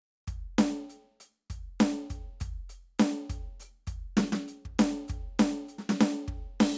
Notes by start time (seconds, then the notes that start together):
0.27 closed hi-hat, kick
0.58 closed hi-hat, snare
0.90 closed hi-hat
1.20 closed hi-hat
1.50 closed hi-hat, kick
1.80 closed hi-hat, snare
2.10 closed hi-hat, kick
2.40 closed hi-hat, kick
2.69 closed hi-hat
2.99 closed hi-hat, snare
3.29 open hi-hat, kick
3.60 open hi-hat, hi-hat pedal
3.87 closed hi-hat, kick
4.16 closed hi-hat, snare, hi-hat pedal
4.32 snare
4.48 closed hi-hat
4.65 kick
4.79 closed hi-hat, snare
5.08 closed hi-hat, kick
5.39 closed hi-hat, snare
5.66 closed hi-hat, hi-hat pedal
5.79 snare
5.89 snare
6.01 snare
6.28 kick
6.60 snare, crash